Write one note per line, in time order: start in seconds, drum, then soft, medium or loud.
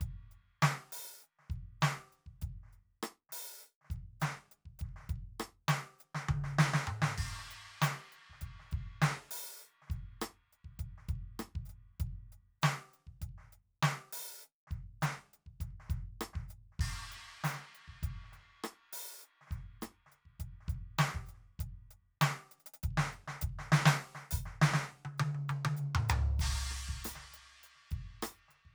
0.01 closed hi-hat medium
0.01 kick soft
0.31 closed hi-hat soft
0.62 closed hi-hat medium
0.62 snare loud
0.92 open hi-hat loud
1.21 closed hi-hat soft
1.21 hi-hat pedal medium
1.39 snare soft
1.42 snare soft
1.47 kick soft
1.47 snare soft
1.52 closed hi-hat soft
1.56 kick soft
1.81 closed hi-hat medium
1.81 snare loud
1.81 hi-hat pedal soft
2.12 closed hi-hat soft
2.26 kick soft
2.42 closed hi-hat medium
2.42 kick soft
2.50 kick soft
2.63 snare soft
2.67 snare soft
2.73 closed hi-hat soft
3.03 closed hi-hat medium
3.03 cross-stick medium
3.29 open hi-hat loud
3.29 snare soft
3.61 closed hi-hat soft
3.61 hi-hat pedal soft
3.81 snare soft
3.85 snare soft
3.90 closed hi-hat soft
3.90 kick soft
3.90 snare soft
3.96 kick soft
4.20 closed hi-hat medium
4.20 snare medium
4.20 hi-hat pedal soft
4.51 closed hi-hat soft
4.66 kick soft
4.79 closed hi-hat medium
4.79 kick soft
4.84 snare soft
4.89 kick soft
4.96 snare soft
5.00 snare soft
5.08 closed hi-hat medium
5.08 kick soft
5.08 snare soft
5.16 kick soft
5.40 closed hi-hat medium
5.40 cross-stick medium
5.68 open hi-hat loud
5.68 snare medium
5.99 closed hi-hat medium
5.99 hi-hat pedal soft
6.15 snare medium
6.29 kick soft
6.29 high tom loud
6.36 kick soft
6.44 snare soft
6.59 snare loud
6.74 snare loud
6.87 mid tom medium
7.02 snare loud
7.18 kick soft
7.18 crash medium
7.25 kick soft
7.33 snare soft
7.39 snare soft
7.45 snare soft
7.51 closed hi-hat medium
7.82 open hi-hat loud
7.82 snare medium
7.82 hi-hat pedal medium
7.92 snare soft
8.12 closed hi-hat soft
8.30 kick soft
8.30 snare soft
8.41 closed hi-hat medium
8.41 kick soft
8.49 kick soft
8.60 snare soft
8.66 snare soft
8.71 kick soft
8.71 snare soft
8.71 closed hi-hat soft
8.79 kick soft
8.83 kick soft
9.02 closed hi-hat medium
9.02 snare loud
9.31 open hi-hat loud
9.62 hi-hat pedal soft
9.82 snare soft
9.88 closed hi-hat soft
9.88 kick soft
9.88 snare soft
9.96 kick soft
10.21 closed hi-hat loud
10.21 cross-stick medium
10.21 hi-hat pedal soft
10.53 closed hi-hat soft
10.65 kick soft
10.79 closed hi-hat medium
10.79 kick soft
10.98 snare soft
11.03 snare soft
11.09 closed hi-hat medium
11.09 kick soft
11.15 kick soft
11.39 closed hi-hat medium
11.39 cross-stick medium
11.55 kick soft
11.65 closed hi-hat soft
11.65 hi-hat pedal medium
12.00 closed hi-hat medium
12.00 kick soft
12.07 kick soft
12.32 closed hi-hat soft
12.62 closed hi-hat medium
12.62 snare loud
12.62 hi-hat pedal medium
12.94 closed hi-hat soft
13.07 kick soft
13.22 closed hi-hat medium
13.22 kick soft
13.29 kick soft
13.38 snare soft
13.41 snare soft
13.53 closed hi-hat soft
13.83 closed hi-hat medium
13.83 snare loud
14.09 open hi-hat loud
14.09 snare soft
14.43 hi-hat pedal medium
14.67 kick soft
14.67 snare soft
14.72 closed hi-hat soft
15.02 closed hi-hat medium
15.02 snare medium
15.02 hi-hat pedal soft
15.34 closed hi-hat soft
15.46 kick soft
15.61 closed hi-hat medium
15.61 kick soft
15.61 snare soft
15.71 kick soft
15.80 snare soft
15.86 snare soft
15.88 closed hi-hat medium
15.88 kick soft
15.88 snare soft
15.91 snare soft
15.97 kick soft
16.21 closed hi-hat medium
16.21 cross-stick medium
16.34 kick soft
16.34 snare soft
16.41 kick soft
16.48 closed hi-hat medium
16.48 hi-hat pedal soft
16.72 snare soft
16.80 kick medium
16.80 crash medium
16.87 kick soft
17.12 closed hi-hat medium
17.17 cross-stick soft
17.44 open hi-hat medium
17.44 snare medium
17.44 hi-hat pedal soft
17.55 snare soft
17.75 closed hi-hat soft
17.88 kick soft
18.03 closed hi-hat medium
18.03 kick soft
18.12 kick soft
18.24 snare soft
18.33 snare soft
18.33 closed hi-hat soft
18.64 closed hi-hat medium
18.64 cross-stick medium
18.93 open hi-hat loud
19.22 closed hi-hat soft
19.22 hi-hat pedal medium
19.41 snare soft
19.47 kick soft
19.47 snare soft
19.51 snare soft
19.51 closed hi-hat soft
19.82 closed hi-hat medium
19.82 cross-stick medium
19.82 hi-hat pedal medium
20.06 snare soft
20.12 closed hi-hat soft
20.25 kick soft
20.40 closed hi-hat medium
20.40 kick soft
20.61 snare soft
20.65 kick soft
20.65 snare soft
20.70 closed hi-hat medium
20.75 kick soft
20.99 closed hi-hat medium
20.99 snare loud
21.08 snare soft
21.15 kick soft
21.26 closed hi-hat soft
21.26 hi-hat pedal soft
21.35 snare soft
21.59 closed hi-hat medium
21.59 kick soft
21.91 closed hi-hat soft
22.21 closed hi-hat loud
22.21 snare loud
22.31 snare soft
22.51 closed hi-hat medium
22.60 closed hi-hat soft
22.66 closed hi-hat medium
22.74 closed hi-hat medium
22.83 closed hi-hat medium
22.83 kick soft
22.91 kick soft
22.98 snare loud
23.13 closed hi-hat soft
23.28 snare medium
23.42 closed hi-hat loud
23.42 kick soft
23.49 kick soft
23.59 snare soft
23.72 snare loud
23.86 snare loud
24.15 snare soft
24.31 open hi-hat loud
24.31 kick soft
24.31 hi-hat pedal soft
24.40 kick soft
24.46 snare soft
24.62 snare loud
24.74 snare loud
24.92 high tom soft
25.05 high tom medium
25.18 hi-hat pedal soft
25.18 high tom loud
25.35 high tom soft
25.49 hi-hat pedal medium
25.49 high tom medium
25.65 high tom loud
25.77 hi-hat pedal medium
25.95 mid tom loud
26.09 hi-hat pedal loud
26.09 floor tom loud
26.39 kick medium
26.39 hi-hat pedal loud
26.39 crash loud
26.71 cross-stick soft
26.89 kick soft
27.05 open hi-hat loud
27.05 cross-stick medium
27.16 snare soft
27.30 closed hi-hat medium
27.30 snare soft
27.63 open hi-hat soft
27.63 hi-hat pedal soft
27.75 snare soft
27.91 closed hi-hat soft
27.91 kick soft
28.22 open hi-hat medium
28.22 cross-stick medium
28.22 hi-hat pedal soft
28.48 snare soft
28.48 closed hi-hat soft
28.65 kick soft